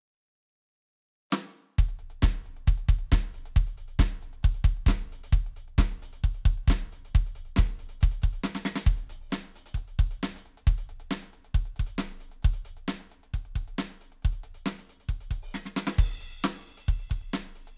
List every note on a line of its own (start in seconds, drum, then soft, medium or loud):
1.30 snare loud
1.30 hi-hat pedal medium
1.78 kick loud
1.78 closed hi-hat medium
1.89 closed hi-hat medium
1.99 closed hi-hat medium
2.10 closed hi-hat medium
2.22 kick loud
2.22 snare loud
2.34 closed hi-hat soft
2.46 closed hi-hat medium
2.57 closed hi-hat soft
2.67 kick loud
2.67 closed hi-hat medium
2.77 closed hi-hat medium
2.89 closed hi-hat medium
2.89 kick loud
2.99 closed hi-hat soft
3.12 kick loud
3.12 snare loud
3.24 closed hi-hat soft
3.34 closed hi-hat medium
3.46 closed hi-hat medium
3.56 kick loud
3.56 closed hi-hat medium
3.67 closed hi-hat medium
3.77 closed hi-hat medium
3.88 closed hi-hat medium
3.99 kick loud
3.99 snare loud
4.12 closed hi-hat soft
4.23 closed hi-hat medium
4.33 closed hi-hat medium
4.44 kick loud
4.54 closed hi-hat medium
4.64 closed hi-hat medium
4.64 kick loud
4.77 kick soft
4.77 closed hi-hat soft
4.86 kick loud
4.86 snare loud
5.00 closed hi-hat soft
5.12 closed hi-hat medium
5.24 closed hi-hat medium
5.32 kick loud
5.32 closed hi-hat medium
5.46 closed hi-hat soft
5.56 closed hi-hat medium
5.68 closed hi-hat soft
5.78 kick loud
5.78 snare loud
5.91 closed hi-hat soft
6.02 closed hi-hat medium
6.13 closed hi-hat medium
6.24 kick loud
6.24 closed hi-hat medium
6.34 closed hi-hat soft
6.45 kick loud
6.45 closed hi-hat soft
6.57 closed hi-hat soft
6.68 kick loud
6.68 snare loud
6.81 closed hi-hat soft
6.92 closed hi-hat medium
7.05 closed hi-hat medium
7.15 kick loud
7.15 closed hi-hat medium
7.26 closed hi-hat medium
7.35 closed hi-hat medium
7.45 closed hi-hat soft
7.56 kick loud
7.56 snare loud
7.66 closed hi-hat medium
7.79 closed hi-hat medium
7.89 closed hi-hat medium
8.01 closed hi-hat medium
8.01 kick loud
8.11 closed hi-hat medium
8.22 closed hi-hat medium
8.22 kick loud
8.33 closed hi-hat medium
8.44 snare loud
8.44 hi-hat pedal soft
8.55 snare loud
8.65 snare loud
8.76 snare loud
8.86 closed hi-hat medium
8.86 kick loud
8.97 closed hi-hat medium
9.09 closed hi-hat loud
9.20 open hi-hat soft
9.30 snare loud
9.30 hi-hat pedal soft
9.45 closed hi-hat medium
9.56 closed hi-hat medium
9.66 closed hi-hat loud
9.74 kick medium
9.74 closed hi-hat medium
9.88 closed hi-hat medium
9.99 kick loud
9.99 closed hi-hat medium
10.11 closed hi-hat medium
10.23 snare loud
10.36 closed hi-hat loud
10.46 closed hi-hat medium
10.57 closed hi-hat medium
10.67 kick loud
10.67 closed hi-hat medium
10.78 closed hi-hat medium
10.89 closed hi-hat medium
11.00 closed hi-hat medium
11.11 snare loud
11.22 closed hi-hat medium
11.33 closed hi-hat medium
11.45 closed hi-hat medium
11.54 kick loud
11.54 closed hi-hat medium
11.65 closed hi-hat medium
11.76 kick medium
11.76 closed hi-hat medium
11.86 closed hi-hat medium
11.98 snare loud
12.08 closed hi-hat soft
12.20 closed hi-hat medium
12.32 closed hi-hat medium
12.43 kick loud
12.43 closed hi-hat medium
12.53 closed hi-hat medium
12.65 closed hi-hat medium
12.77 closed hi-hat medium
12.88 snare loud
13.01 closed hi-hat medium
13.12 closed hi-hat medium
13.23 closed hi-hat medium
13.34 kick medium
13.34 closed hi-hat medium
13.45 closed hi-hat soft
13.56 kick medium
13.56 closed hi-hat medium
13.68 closed hi-hat medium
13.78 snare loud
13.90 closed hi-hat medium
14.01 closed hi-hat medium
14.12 closed hi-hat soft
14.22 kick loud
14.22 closed hi-hat soft
14.32 closed hi-hat medium
14.44 closed hi-hat medium
14.54 closed hi-hat medium
14.66 snare loud
14.79 closed hi-hat medium
14.89 closed hi-hat medium
15.00 closed hi-hat medium
15.09 kick medium
15.09 closed hi-hat soft
15.21 closed hi-hat medium
15.31 closed hi-hat medium
15.31 kick medium
15.42 open hi-hat medium
15.52 snare medium
15.52 hi-hat pedal soft
15.66 snare medium
15.76 snare loud
15.87 snare loud
15.98 kick loud
15.98 crash medium
16.10 closed hi-hat soft
16.30 closed hi-hat medium
16.44 snare loud
16.56 closed hi-hat medium
16.68 closed hi-hat medium
16.77 closed hi-hat medium
16.88 kick loud
16.88 closed hi-hat medium
16.99 closed hi-hat medium
17.10 kick medium
17.10 closed hi-hat medium
17.21 closed hi-hat soft
17.33 snare loud
17.45 closed hi-hat medium
17.55 closed hi-hat medium
17.67 closed hi-hat medium